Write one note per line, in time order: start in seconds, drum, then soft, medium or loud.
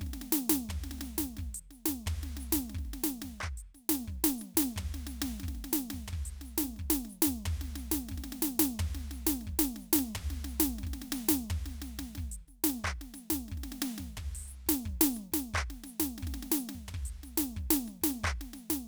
0.01 kick soft
0.01 snare soft
0.06 snare soft
0.11 snare soft
0.13 snare soft
0.21 snare soft
0.32 snare medium
0.32 hi-hat pedal soft
0.49 kick soft
0.49 snare loud
0.69 kick soft
0.69 floor tom medium
0.84 snare soft
0.91 snare soft
0.98 snare soft
1.01 snare medium
1.01 hi-hat pedal soft
1.18 kick soft
1.18 snare medium
1.37 kick soft
1.37 snare soft
1.54 closed hi-hat loud
1.71 snare soft
1.71 hi-hat pedal soft
1.86 kick soft
1.86 snare medium
2.06 kick soft
2.06 floor tom loud
2.23 snare soft
2.37 snare soft
2.37 hi-hat pedal medium
2.52 kick soft
2.52 snare medium
2.70 snare soft
2.75 kick soft
2.75 snare soft
2.85 snare soft
2.93 snare soft
3.04 snare medium
3.08 hi-hat pedal soft
3.22 kick soft
3.22 snare medium
3.40 kick soft
3.40 percussion medium
3.57 closed hi-hat medium
3.75 snare soft
3.75 hi-hat pedal soft
3.89 kick soft
3.89 snare medium
3.95 snare soft
4.08 kick soft
4.08 snare soft
4.24 snare loud
4.38 snare soft
4.38 hi-hat pedal medium
4.54 kick soft
4.54 snare loud
4.62 snare soft
4.76 kick soft
4.76 floor tom medium
4.94 snare soft
5.07 snare soft
5.07 hi-hat pedal medium
5.21 kick soft
5.21 snare medium
5.40 kick soft
5.40 snare soft
5.48 snare soft
5.55 snare soft
5.64 snare soft
5.73 snare medium
5.73 hi-hat pedal soft
5.90 kick soft
5.90 snare medium
6.08 floor tom medium
6.13 kick soft
6.25 closed hi-hat medium
6.41 snare soft
6.41 hi-hat pedal soft
6.58 kick soft
6.58 snare medium
6.62 snare soft
6.76 kick soft
6.76 snare soft
6.90 snare medium
7.05 snare soft
7.10 hi-hat pedal medium
7.22 snare loud
7.27 kick soft
7.46 kick soft
7.46 floor tom medium
7.61 snare soft
7.76 snare soft
7.76 hi-hat pedal soft
7.91 kick soft
7.91 snare medium
8.09 kick soft
8.09 snare soft
8.18 snare soft
8.24 snare soft
8.32 snare medium
8.42 snare medium
8.42 hi-hat pedal soft
8.59 kick soft
8.59 snare loud
8.79 kick soft
8.79 floor tom medium
8.95 snare soft
9.11 snare soft
9.11 hi-hat pedal soft
9.27 kick soft
9.27 snare medium
9.41 snare soft
9.47 kick soft
9.59 snare medium
9.76 snare soft
9.80 hi-hat pedal soft
9.93 kick soft
9.93 snare loud
9.99 snare soft
10.15 kick soft
10.15 floor tom loud
10.30 snare soft
10.44 snare soft
10.44 hi-hat pedal soft
10.60 kick soft
10.60 snare loud
10.79 snare soft
10.83 kick soft
10.83 snare soft
10.93 snare soft
11.02 snare soft
11.12 snare medium
11.12 hi-hat pedal medium
11.29 kick soft
11.29 snare loud
11.50 kick soft
11.50 floor tom medium
11.66 snare soft
11.82 snare soft
11.82 hi-hat pedal soft
11.98 kick soft
11.98 snare medium
12.15 kick soft
12.15 snare soft
12.31 open hi-hat medium
12.48 snare soft
12.48 hi-hat pedal soft
12.64 kick soft
12.64 snare medium
12.70 snare soft
12.84 kick soft
12.84 percussion medium
13.01 snare soft
13.14 snare soft
13.14 hi-hat pedal medium
13.30 kick soft
13.30 snare medium
13.48 kick soft
13.48 snare soft
13.57 snare soft
13.63 snare soft
13.72 snare soft
13.81 hi-hat pedal medium
13.98 kick soft
13.98 snare soft
14.17 kick soft
14.17 floor tom medium
14.35 open hi-hat medium
14.48 hi-hat pedal medium
14.54 snare soft
14.66 kick soft
14.66 snare medium
14.85 kick soft
14.85 snare soft
15.01 snare loud
15.13 snare soft
15.13 hi-hat pedal medium
15.32 kick soft
15.32 snare medium
15.54 kick soft
15.54 percussion loud
15.70 snare soft
15.84 snare soft
15.84 hi-hat pedal medium
16.00 kick soft
16.00 snare medium
16.18 snare soft
16.23 kick soft
16.27 snare soft
16.34 snare soft
16.43 snare soft
16.52 snare medium
16.57 hi-hat pedal medium
16.69 snare medium
16.75 kick soft
16.88 floor tom medium
16.94 kick soft
17.05 closed hi-hat medium
17.23 snare soft
17.23 hi-hat pedal soft
17.37 kick soft
17.37 snare medium
17.56 kick soft
17.56 snare soft
17.71 snare loud
17.76 snare soft
17.85 snare soft
17.85 hi-hat pedal soft
18.01 kick soft
18.01 snare medium
18.11 snare soft
18.24 kick soft
18.24 percussion loud
18.41 snare soft
18.53 snare soft
18.53 hi-hat pedal soft
18.70 kick soft
18.70 snare medium